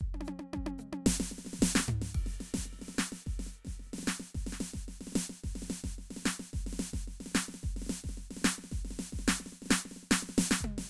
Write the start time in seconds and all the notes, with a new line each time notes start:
0.01 kick
0.08 kick
0.14 high tom
0.21 hi-hat pedal, high tom
0.28 high tom
0.39 high tom
0.53 kick, high tom
0.62 kick
0.66 high tom
0.78 hi-hat pedal, mid tom
0.93 high tom
1.06 kick, snare
1.20 snare
1.30 snare, hi-hat pedal
1.38 snare
1.45 snare
1.46 snare
1.53 snare
1.59 kick, snare
1.75 snare
1.80 snare
1.85 floor tom, hi-hat pedal
2.02 snare
2.15 kick, ride
2.20 kick
2.26 kick, snare
2.37 snare, hi-hat pedal
2.54 kick, snare
2.66 snare
2.73 snare
2.79 snare
2.82 snare
2.88 snare
2.95 snare, hi-hat pedal
2.98 snare
3.12 snare
3.26 kick, snare
3.33 kick
3.39 snare
3.46 snare
3.51 hi-hat pedal
3.65 kick, snare
3.67 snare
3.72 kick
3.79 snare
3.87 snare
3.93 snare
3.98 snare
4.03 snare, hi-hat pedal
4.07 snare
4.20 snare
4.35 kick, snare
4.41 kick
4.47 snare
4.52 snare
4.60 snare, hi-hat pedal
4.74 kick, snare
4.88 snare
5.01 snare
5.07 snare
5.12 snare
5.15 snare, hi-hat pedal
5.29 snare
5.44 kick, snare
5.50 kick
5.55 snare
5.62 snare
5.68 snare, hi-hat pedal
5.70 snare
5.84 kick, snare
5.90 kick
5.98 snare
6.11 snare
6.16 snare
6.23 snare
6.26 snare, hi-hat pedal
6.39 snare
6.53 kick, snare
6.60 kick
6.66 snare
6.73 snare
6.79 snare, hi-hat pedal
6.93 kick, snare
7.08 snare
7.20 snare
7.26 snare
7.32 snare
7.35 snare, hi-hat pedal
7.48 snare
7.54 snare
7.63 kick, snare
7.70 kick
7.76 snare
7.82 snare
7.86 snare, hi-hat pedal
7.89 snare
8.04 kick, snare
8.09 snare
8.17 snare
8.31 snare
8.37 snare
8.42 snare
8.44 snare, hi-hat pedal
8.58 snare
8.64 snare
8.72 kick, snare
8.79 kick
8.85 snare
8.91 snare
8.97 snare, hi-hat pedal
8.99 snare
9.12 kick, snare
9.19 snare
9.28 snare
9.40 snare
9.46 snare
9.52 snare, hi-hat pedal
9.62 snare
9.66 snare
9.70 snare
9.85 snare
9.91 snare
9.96 snare
10.03 snare
10.11 snare, hi-hat pedal
10.22 snare
10.29 snare
10.38 snare, hi-hat pedal
10.51 snare
10.61 kick, mid tom
10.67 kick
10.78 snare